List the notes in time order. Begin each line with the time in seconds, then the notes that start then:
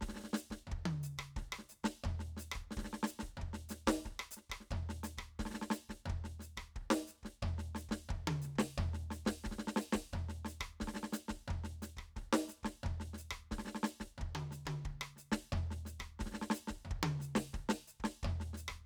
0.01 kick, snare
0.09 snare
0.14 snare
0.16 snare
0.20 snare
0.33 snare, hi-hat pedal
0.50 kick, snare
0.67 floor tom
0.71 kick
0.86 high tom
1.03 hi-hat pedal
1.18 kick, cross-stick
1.36 kick, snare
1.52 cross-stick
1.59 snare
1.69 snare, hi-hat pedal
1.83 kick, snare
2.04 kick, floor tom
2.19 snare
2.37 snare, hi-hat pedal
2.52 kick, cross-stick
2.71 snare
2.77 kick, snare
2.83 snare
2.93 snare
3.03 snare, hi-hat pedal
3.19 kick, snare
3.37 floor tom
3.41 kick
3.53 snare
3.69 snare, hi-hat pedal
3.87 kick, snare
4.05 kick, snare
4.19 cross-stick
4.31 hi-hat pedal
4.37 snare
4.50 kick, cross-stick
4.60 snare
4.71 kick, floor tom
4.89 snare
5.03 snare, hi-hat pedal
5.18 kick, cross-stick
5.39 kick, snare
5.45 snare
5.50 snare
5.54 snare
5.62 snare
5.70 snare, hi-hat pedal
5.89 kick, snare
6.06 kick, floor tom
6.24 snare
6.39 snare, hi-hat pedal
6.57 kick, cross-stick
6.76 kick, snare
6.90 snare
7.07 snare, hi-hat pedal
7.23 kick, snare
7.42 kick, floor tom
7.58 snare
7.75 snare, hi-hat pedal
7.89 kick, snare
8.09 kick, floor tom
8.27 high tom
8.42 snare, hi-hat pedal
8.55 kick, snare
8.78 kick, floor tom
8.93 snare
9.11 snare, hi-hat pedal
9.25 kick, snare
9.44 kick, snare
9.51 snare
9.58 snare
9.67 snare
9.76 snare
9.80 hi-hat pedal
9.93 kick, snare
10.13 kick, floor tom
10.29 snare
10.45 snare, hi-hat pedal
10.60 kick, cross-stick
10.80 kick, snare
10.87 snare
10.94 snare
10.96 snare
11.03 snare
11.12 snare, hi-hat pedal
11.28 kick, snare
11.48 kick, floor tom
11.64 snare
11.82 snare, hi-hat pedal
11.97 kick, cross-stick
12.16 kick, snare
12.33 snare
12.48 snare, hi-hat pedal
12.63 kick, snare
12.83 kick, floor tom
13.00 snare
13.13 snare
13.18 hi-hat pedal
13.31 kick, cross-stick
13.51 kick, snare
13.58 snare
13.65 snare
13.67 snare
13.75 snare
13.83 snare, hi-hat pedal
14.00 kick, snare
14.18 kick, floor tom
14.35 high tom
14.51 snare, hi-hat pedal
14.65 kick, high tom
14.85 kick, cross-stick
15.01 cross-stick
15.16 snare, hi-hat pedal
15.32 kick, snare
15.52 kick, floor tom
15.71 snare
15.85 snare, hi-hat pedal
15.99 kick, cross-stick
16.19 kick, snare
16.26 snare
16.31 snare
16.34 snare
16.42 snare
16.50 snare
16.54 hi-hat pedal
16.67 kick, snare
16.85 floor tom
16.91 kick
17.03 high tom
17.19 snare, hi-hat pedal
17.35 kick, snare
17.53 kick, snare
17.69 snare
17.87 hi-hat pedal
18.00 kick
18.04 snare
18.23 kick, floor tom
18.40 snare
18.53 snare, hi-hat pedal
18.68 kick, cross-stick